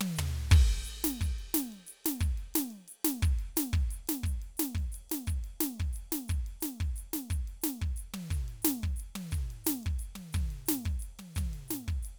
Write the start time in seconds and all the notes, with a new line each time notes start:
0.01 high tom
0.16 floor tom, hi-hat pedal
0.51 kick, hi-hat pedal, ride, crash
0.69 ride
0.85 hi-hat pedal, ride
1.04 snare, ride
1.21 kick, hi-hat pedal, ride
1.39 ride
1.54 snare, hi-hat pedal, ride
1.72 ride
1.87 hi-hat pedal, ride
2.05 snare, ride
2.20 kick, hi-hat pedal, ride
2.38 ride
2.54 snare, hi-hat pedal, ride
2.71 ride
2.88 hi-hat pedal, ride
3.05 snare
3.22 kick, hi-hat pedal, ride
3.39 ride
3.57 snare, hi-hat pedal, ride
3.73 kick, ride
3.91 hi-hat pedal, ride
4.08 snare, ride
4.24 kick, hi-hat pedal, ride
4.42 ride
4.57 snare, hi-hat pedal, ride
4.75 kick, ride
4.92 hi-hat pedal, ride
5.10 snare, ride
5.27 kick, hi-hat pedal, ride
5.44 ride
5.61 snare, hi-hat pedal, ride
5.80 kick, ride
5.93 hi-hat pedal, ride
6.12 snare, ride
6.28 kick, hi-hat pedal, ride
6.47 ride
6.61 snare, hi-hat pedal, ride
6.80 kick, ride
6.96 hi-hat pedal, ride
7.13 snare, ride
7.30 kick, hi-hat pedal, ride
7.48 ride
7.62 snare, hi-hat pedal, ride
7.82 kick
7.96 hi-hat pedal, ride
8.14 high tom, ride
8.31 kick, hi-hat pedal, ride
8.48 ride
8.62 snare, hi-hat pedal
8.83 kick, ride
8.96 hi-hat pedal, ride
9.16 high tom, ride
9.31 kick, hi-hat pedal, ride
9.51 ride
9.65 snare, hi-hat pedal, ride
9.83 kick, ride
9.99 hi-hat pedal, ride
10.16 high tom, ride
10.33 kick, hi-hat pedal, high tom, ride
10.51 ride
10.66 snare, hi-hat pedal, ride
10.85 kick, ride
10.99 hi-hat pedal, ride
11.19 high tom, ride
11.35 kick, hi-hat pedal, high tom, ride
11.53 ride
11.68 snare, hi-hat pedal, ride
11.88 kick, ride
12.03 hi-hat pedal, ride